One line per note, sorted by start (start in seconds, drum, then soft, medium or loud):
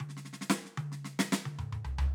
0.00 high tom medium
0.09 snare soft
0.17 snare soft
0.25 snare soft
0.33 snare soft
0.41 snare medium
0.50 snare loud
0.65 snare soft
0.77 high tom loud
0.92 snare soft
1.04 snare medium
1.19 snare loud
1.32 snare loud
1.45 high tom loud
1.59 mid tom loud
1.72 mid tom medium
1.84 floor tom loud
1.98 floor tom loud